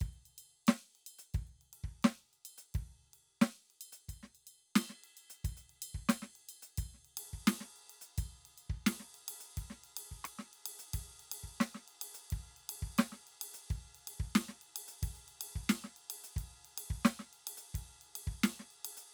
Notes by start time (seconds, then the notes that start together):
0.01 kick, ride bell
0.13 closed hi-hat
0.26 ride bell
0.38 ride bell
0.67 snare, ride bell
0.95 ride
1.07 ride bell
1.19 closed hi-hat
1.34 kick, ride bell
1.47 closed hi-hat
1.61 ride
1.73 ride
1.84 kick
2.03 snare, ride, floor tom
2.33 ride bell
2.45 ride bell
2.58 closed hi-hat
2.75 kick, snare, floor tom, ride
3.14 ride
3.42 snare, ride bell
3.70 ride
3.81 ride bell
3.93 closed hi-hat
4.09 kick, ride bell
4.23 snare
4.35 ride bell
4.47 ride bell
4.76 snare, ride bell
4.90 snare
5.04 ride
5.17 ride bell
5.30 closed hi-hat
5.45 kick, ride bell
5.57 closed hi-hat
5.70 ride
5.82 ride bell
5.95 kick
6.09 snare, ride bell
6.22 snare
6.36 ride
6.49 ride bell
6.63 closed hi-hat
6.78 kick, ride bell
6.94 snare
7.05 ride
7.17 ride
7.34 kick
7.47 snare, ride
7.61 snare
7.76 ride
7.90 ride
8.02 closed hi-hat
8.15 kick, closed hi-hat, ride bell
8.46 ride
8.58 ride bell
8.70 kick
8.87 snare, ride
9.00 snare
9.15 ride
9.29 ride
9.41 closed hi-hat
9.57 kick, ride
9.70 snare
9.84 ride
9.97 ride
10.12 kick
10.25 cross-stick, ride
10.39 snare
10.54 ride
10.66 ride
10.79 closed hi-hat
10.94 kick, ride
11.20 ride
11.32 ride
11.44 kick
11.61 snare, ride
11.75 snare
11.88 ride
12.02 ride
12.15 closed hi-hat
12.31 kick, ride
12.45 closed hi-hat
12.57 ride
12.70 ride
12.83 kick
12.99 snare, ride
13.12 snare
13.27 ride
13.42 ride
13.54 closed hi-hat
13.71 kick, ride
13.95 ride
14.08 ride
14.20 kick
14.35 snare, ride
14.49 snare
14.62 ride
14.76 ride
14.88 closed hi-hat
15.03 kick, ride
15.15 closed hi-hat
15.28 ride
15.41 ride
15.56 kick
15.70 snare, ride bell
15.84 snare
15.97 ride
16.10 ride
16.24 closed hi-hat
16.37 kick, ride
16.65 ride
16.78 ride
16.90 kick
17.05 snare, ride bell
17.20 snare
17.33 ride
17.47 ride
17.58 closed hi-hat
17.75 kick, ride
17.87 closed hi-hat
18.02 ride
18.16 ride
18.27 kick
18.44 snare, ride
18.60 snare
18.71 ride
18.85 ride
18.97 closed hi-hat